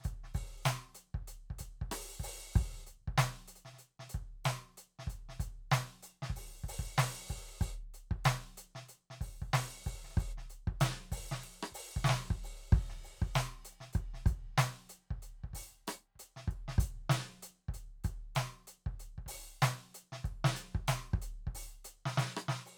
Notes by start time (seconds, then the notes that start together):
0.01 open hi-hat, snare
0.06 kick
0.24 snare
0.35 open hi-hat, kick
0.63 closed hi-hat, snare, hi-hat pedal
0.95 closed hi-hat
1.15 kick
1.28 closed hi-hat
1.51 kick
1.59 closed hi-hat, kick
1.82 kick
1.92 open hi-hat, cross-stick
2.20 open hi-hat, kick
2.32 kick
2.55 open hi-hat, kick
2.87 closed hi-hat
3.08 kick
3.18 closed hi-hat, snare
3.48 closed hi-hat
3.56 closed hi-hat
3.65 snare
3.74 snare
3.79 closed hi-hat
4.00 snare
4.10 open hi-hat
4.15 kick
4.45 open hi-hat, snare
4.49 hi-hat pedal
4.78 closed hi-hat
4.99 snare
5.08 closed hi-hat, kick
5.29 snare
5.40 closed hi-hat, kick
5.71 closed hi-hat, snare, hi-hat pedal
6.03 open hi-hat
6.23 snare
6.30 kick
6.36 open hi-hat
6.64 kick
6.69 open hi-hat
6.79 kick
6.98 open hi-hat, snare
7.30 open hi-hat, kick
7.61 open hi-hat, kick
7.70 hi-hat pedal
7.94 closed hi-hat
8.11 kick
8.25 closed hi-hat, snare
8.58 closed hi-hat
8.76 snare
8.89 closed hi-hat
9.11 snare
9.21 open hi-hat, kick
9.42 kick
9.54 open hi-hat, snare
9.86 open hi-hat, kick
10.04 snare
10.11 snare
10.18 open hi-hat, kick
10.38 snare
10.50 closed hi-hat
10.68 kick
10.81 closed hi-hat, snare
11.12 open hi-hat, kick
11.24 kick
11.32 snare
11.44 open hi-hat
11.63 cross-stick
11.72 open hi-hat, kick
11.97 kick
12.05 kick, snare
12.10 snare
12.31 kick
12.44 open hi-hat
12.73 kick, crash
12.90 snare
13.04 open hi-hat
13.22 kick
13.35 open hi-hat, snare
13.41 hi-hat pedal
13.65 closed hi-hat
13.73 closed hi-hat
13.81 snare
13.93 closed hi-hat, kick
14.14 snare
14.26 closed hi-hat, kick
14.58 closed hi-hat, snare
14.90 closed hi-hat
15.11 kick
15.23 closed hi-hat
15.44 kick
15.54 open hi-hat, kick
15.88 open hi-hat, cross-stick
16.16 closed hi-hat, kick
16.37 snare
16.48 kick, closed hi-hat
16.68 snare
16.79 closed hi-hat, kick
17.10 closed hi-hat, snare
17.21 snare
17.43 closed hi-hat
17.69 kick
17.74 closed hi-hat
18.04 closed hi-hat, kick
18.36 closed hi-hat, snare
18.68 closed hi-hat
18.87 kick
19.00 closed hi-hat
19.18 kick
19.27 open hi-hat, kick
19.62 open hi-hat, snare, hi-hat pedal
19.95 closed hi-hat
20.13 snare
20.25 kick, open hi-hat
20.45 snare
20.50 snare
20.56 closed hi-hat
20.75 kick
20.88 closed hi-hat, snare
20.97 snare
21.14 kick
21.22 closed hi-hat
21.47 kick
21.55 open hi-hat
21.85 closed hi-hat
22.06 snare
22.18 snare
22.37 cross-stick
22.49 snare
22.66 open hi-hat